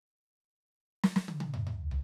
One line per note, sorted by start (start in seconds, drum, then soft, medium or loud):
1.04 snare loud
1.09 hi-hat pedal soft
1.16 snare loud
1.28 high tom loud
1.40 high tom loud
1.54 mid tom loud
1.67 mid tom loud
1.91 floor tom medium